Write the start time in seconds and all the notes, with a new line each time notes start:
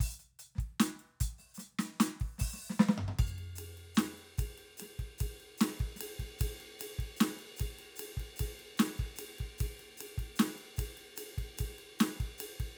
0.01 open hi-hat, kick
0.13 hi-hat pedal
0.20 closed hi-hat
0.40 closed hi-hat
0.56 kick, snare
0.61 closed hi-hat
0.81 closed hi-hat, snare
1.00 closed hi-hat
1.21 closed hi-hat, kick
1.39 open hi-hat, snare
1.55 snare, hi-hat pedal
1.60 closed hi-hat
1.80 closed hi-hat, snare
2.01 open hi-hat, snare
2.21 kick, open hi-hat
2.39 open hi-hat, kick, snare
2.54 snare
2.59 open hi-hat
2.70 snare
2.80 snare, hi-hat pedal
2.89 snare
2.99 floor tom
3.04 kick
3.09 floor tom
3.20 kick, ride bell
3.27 hi-hat pedal
3.39 ride
3.56 hi-hat pedal, ride
3.78 ride
3.96 snare, hi-hat pedal
4.00 ride
4.18 ride
4.38 kick, hi-hat pedal, ride
4.58 ride
4.78 hi-hat pedal, ride
4.82 snare
5.00 kick, ride
5.19 kick, hi-hat pedal, ride
5.41 ride
5.58 snare, hi-hat pedal, ride
5.80 kick, ride
5.96 snare, hi-hat pedal
6.02 ride
6.20 kick, snare, ride
6.40 kick, hi-hat pedal, ride
6.61 ride
6.80 hi-hat pedal, ride
6.99 kick, ride
7.17 hi-hat pedal
7.21 snare, ride
7.40 ride
7.57 hi-hat pedal, ride
7.62 kick
7.80 ride
7.97 hi-hat pedal, ride
8.18 kick, ride
8.37 hi-hat pedal, ride
8.41 kick
8.60 ride
8.78 snare, hi-hat pedal, ride
8.99 kick, ride
9.10 kick
9.17 hi-hat pedal, ride
9.39 kick, ride
9.59 kick, hi-hat pedal, ride
9.80 ride
9.98 hi-hat pedal, ride
10.18 kick, ride
10.37 snare, hi-hat pedal, ride
10.59 ride
10.77 kick, hi-hat pedal, ride
10.98 ride
11.17 hi-hat pedal, ride
11.38 kick, ride
11.58 kick, hi-hat pedal, ride
11.70 snare
11.79 ride
12.00 snare, hi-hat pedal, ride
12.21 kick, ride
12.39 hi-hat pedal, ride
12.61 kick, ride